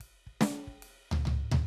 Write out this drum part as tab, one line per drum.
RD |x--x--x-----|
SD |---o--------|
T1 |--------oo-o|
FT |--------oo-o|
BD |g-g--g------|